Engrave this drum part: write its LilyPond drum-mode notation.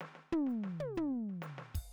\new DrumStaff \drummode { \time 4/4 \tempo 4 = 125 \tuplet 3/2 { <hhp sn>8 sn8 tomfh8 <sn hhp>8 sn8 <tommh hh>8 <hhp tomfh>8 r8 sn8 <sn hhp>8 sn8 <bd cymr>8 } | }